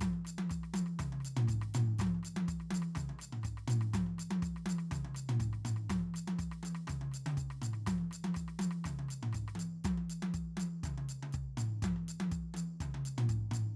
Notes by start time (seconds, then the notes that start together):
0.01 kick, cross-stick, high tom, percussion
0.14 high tom
0.17 high tom
0.25 cross-stick, percussion
0.39 high tom
0.50 kick, cross-stick, percussion
0.64 cross-stick
0.74 high tom, percussion
0.86 cross-stick
0.99 kick, cross-stick, mid tom, percussion
1.13 mid tom
1.21 cross-stick
1.25 percussion
1.37 floor tom
1.48 kick, cross-stick, percussion
1.62 cross-stick
1.74 floor tom, percussion
1.99 kick, cross-stick, high tom, percussion
2.07 high tom
2.15 high tom
2.23 cross-stick, percussion
2.37 high tom
2.48 kick, cross-stick, percussion
2.60 cross-stick
2.71 high tom, percussion
2.82 cross-stick
2.95 kick, cross-stick, mid tom, percussion
3.10 mid tom
3.19 cross-stick, percussion
3.33 floor tom
3.44 kick, cross-stick, percussion
3.58 cross-stick
3.68 floor tom, percussion
3.81 cross-stick
3.94 kick, cross-stick, high tom, percussion
4.07 high tom
4.09 high tom
4.19 cross-stick, percussion
4.31 high tom
4.43 kick, cross-stick, percussion
4.57 cross-stick
4.66 high tom, percussion
4.79 cross-stick
4.92 kick, cross-stick, mid tom, percussion
5.05 mid tom
5.15 cross-stick, percussion
5.29 floor tom
5.40 kick, cross-stick, percussion
5.53 cross-stick
5.65 floor tom, percussion
5.77 cross-stick
5.90 kick, cross-stick, high tom, percussion
6.00 high tom
6.03 high tom
6.06 high tom
6.14 cross-stick, percussion
6.28 high tom
6.39 kick, cross-stick, percussion
6.52 cross-stick
6.63 high tom, percussion
6.75 cross-stick
6.88 kick, cross-stick, mid tom, percussion
7.02 mid tom
7.12 cross-stick, percussion
7.26 cross-stick, mid tom
7.37 kick, percussion
7.51 cross-stick
7.62 floor tom, percussion
7.74 cross-stick
7.87 kick, cross-stick, high tom, percussion
7.98 high tom
8.02 high tom
8.06 high tom
8.11 cross-stick, percussion
8.25 high tom
8.35 kick, cross-stick, percussion
8.48 cross-stick
8.59 high tom, percussion
8.71 cross-stick
8.85 kick, cross-stick, mid tom, percussion
8.99 mid tom
9.09 cross-stick, percussion
9.23 floor tom
9.33 kick, cross-stick, percussion
9.48 cross-stick
9.56 high tom
9.60 percussion
9.85 kick, high tom, percussion
9.98 high tom
10.01 high tom
10.10 percussion
10.23 high tom
10.34 kick, percussion
10.57 high tom, percussion
10.84 kick, mid tom, percussion
10.98 mid tom
11.09 percussion
11.23 mid tom
11.33 kick, percussion
11.58 floor tom, percussion
11.83 kick, high tom, percussion
11.97 high tom
12.00 high tom
12.09 percussion
12.20 high tom
12.32 kick, percussion
12.54 high tom, percussion
12.81 kick, mid tom, percussion
12.95 mid tom
13.06 percussion
13.18 floor tom
13.30 kick, percussion
13.52 floor tom, percussion